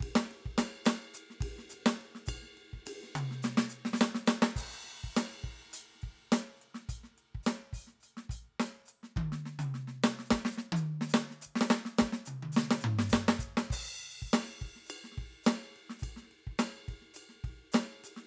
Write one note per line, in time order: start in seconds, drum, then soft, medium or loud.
0.01 kick soft
0.01 ride loud
0.07 kick soft
0.10 kick soft
0.16 snare loud
0.32 ride medium
0.46 kick soft
0.58 snare loud
0.58 hi-hat pedal loud
0.58 ride bell loud
0.85 snare loud
0.85 hi-hat pedal medium
0.85 ride bell loud
1.14 hi-hat pedal loud
1.14 ride medium
1.31 snare soft
1.38 kick medium
1.38 hi-hat pedal soft
1.43 ride loud
1.48 kick soft
1.52 kick soft
1.59 snare soft
1.70 hi-hat pedal medium
1.74 ride soft
1.86 snare loud
2.01 ride soft
2.15 snare soft
2.27 kick soft
2.27 hi-hat pedal medium
2.27 ride bell loud
2.34 kick soft
2.37 kick soft
2.43 snare soft
2.58 ride soft
2.74 kick soft
2.74 snare soft
2.86 hi-hat pedal medium
2.86 ride loud
3.04 snare soft
3.16 hi-hat pedal medium
3.16 mid tom loud
3.31 snare soft
3.43 snare medium
3.43 hi-hat pedal loud
3.58 snare loud
3.70 hi-hat pedal loud
3.85 snare medium
3.94 snare medium
3.94 hi-hat pedal medium
4.01 snare loud
4.15 snare medium
4.27 snare loud
4.27 hi-hat pedal loud
4.43 snare loud
4.56 kick soft
4.56 hi-hat pedal loud
4.56 crash medium
4.63 kick soft
4.74 cross-stick soft
4.84 snare soft
5.04 kick soft
5.17 snare loud
5.17 hi-hat pedal loud
5.17 ride bell loud
5.44 kick soft
5.50 kick soft
5.66 snare soft
5.71 closed hi-hat loud
5.71 hi-hat pedal soft
5.95 snare soft
6.02 kick soft
6.02 closed hi-hat soft
6.32 closed hi-hat loud
6.32 snare loud
6.57 hi-hat pedal soft
6.62 closed hi-hat soft
6.75 snare soft
6.89 closed hi-hat medium
6.89 kick soft
6.95 kick soft
7.04 snare soft
7.18 closed hi-hat soft
7.35 kick soft
7.44 closed hi-hat medium
7.44 snare loud
7.44 hi-hat pedal soft
7.60 snare soft
7.73 open hi-hat medium
7.73 kick soft
7.87 snare soft
8.00 closed hi-hat medium
8.00 hi-hat pedal soft
8.17 snare soft
8.30 closed hi-hat medium
8.30 kick soft
8.35 kick soft
8.60 closed hi-hat medium
8.60 snare medium
8.86 closed hi-hat medium
8.86 hi-hat pedal soft
9.04 snare soft
9.17 kick medium
9.17 high tom loud
9.24 kick soft
9.27 kick soft
9.33 snare medium
9.46 snare soft
9.60 hi-hat pedal medium
9.60 mid tom loud
9.75 snare soft
9.88 snare soft
10.03 snare loud
10.03 hi-hat pedal soft
10.19 snare soft
10.26 hi-hat pedal soft
10.31 kick soft
10.31 snare loud
10.45 snare medium
10.52 hi-hat pedal medium
10.58 snare medium
10.73 hi-hat pedal medium
10.73 high tom loud
11.02 snare medium
11.10 hi-hat pedal medium
11.14 snare loud
11.31 snare soft
11.42 hi-hat pedal loud
11.47 kick soft
11.56 snare medium
11.61 snare loud
11.71 snare loud
11.71 hi-hat pedal medium
11.86 snare medium
11.99 kick soft
11.99 snare loud
11.99 hi-hat pedal medium
12.13 snare medium
12.26 hi-hat pedal loud
12.26 mid tom medium
12.43 high tom medium
12.53 hi-hat pedal medium
12.57 snare loud
12.71 snare loud
12.81 hi-hat pedal medium
12.81 floor tom loud
12.99 snare loud
13.10 kick soft
13.10 snare loud
13.10 hi-hat pedal loud
13.29 snare loud
13.40 kick soft
13.40 hi-hat pedal loud
13.46 kick soft
13.58 snare loud
13.63 cross-stick soft
13.71 kick medium
13.71 hi-hat pedal loud
13.71 crash loud
14.23 kick soft
14.34 snare loud
14.34 ride bell loud
14.41 snare soft
14.61 kick soft
14.61 ride soft
14.76 snare soft
14.87 hi-hat pedal soft
14.87 ride bell loud
15.04 snare soft
15.12 snare soft
15.18 kick soft
15.18 ride soft
15.24 kick soft
15.44 snare loud
15.44 hi-hat pedal medium
15.44 ride bell loud
15.77 ride soft
15.90 snare soft
15.99 kick soft
15.99 hi-hat pedal soft
16.04 ride bell medium
16.08 kick soft
16.17 snare soft
16.23 snare soft
16.32 ride soft
16.47 kick soft
16.59 snare loud
16.59 hi-hat pedal medium
16.59 ride bell loud
16.89 kick soft
16.89 ride medium
17.02 snare soft
17.14 hi-hat pedal medium
17.14 ride bell medium
17.30 snare soft
17.36 snare soft
17.44 kick soft
17.44 ride soft
17.50 kick soft
17.72 snare loud
17.72 hi-hat pedal medium
17.72 ride bell loud
18.04 hi-hat pedal medium
18.04 ride medium
18.17 snare soft